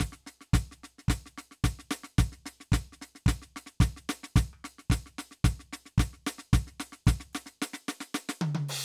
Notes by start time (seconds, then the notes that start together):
0.00 kick, snare
0.12 snare
0.26 snare
0.41 snare
0.53 kick, snare
0.71 snare
0.83 snare
0.98 snare
1.08 kick, snare
1.26 snare
1.38 snare
1.51 snare
1.64 kick, snare
1.79 snare
1.91 snare
2.04 snare
2.18 kick, snare
2.32 snare
2.46 snare
2.60 snare
2.72 kick, snare
2.92 snare
3.01 snare
3.15 snare
3.26 kick, snare
3.42 snare
3.56 snare
3.66 snare
3.80 kick, snare
3.96 snare
4.09 snare
4.23 snare
4.36 kick, snare
4.53 cross-stick
4.64 snare
4.78 snare
4.90 kick, snare
5.06 snare
5.18 snare
5.31 snare
5.44 kick, snare
5.59 snare
5.73 snare
5.85 snare
5.98 kick, snare
6.13 snare
6.26 snare
6.38 snare
6.53 kick, snare
6.67 snare
6.80 snare
6.92 snare
7.06 kick, snare, closed hi-hat
7.20 snare
7.33 snare, closed hi-hat
7.46 snare
7.62 snare
7.73 snare
7.88 snare
8.00 snare
8.14 snare
8.29 snare
8.41 high tom
8.55 high tom
8.69 crash